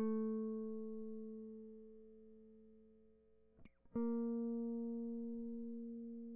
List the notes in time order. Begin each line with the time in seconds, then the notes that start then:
0.00 A3
3.97 A#3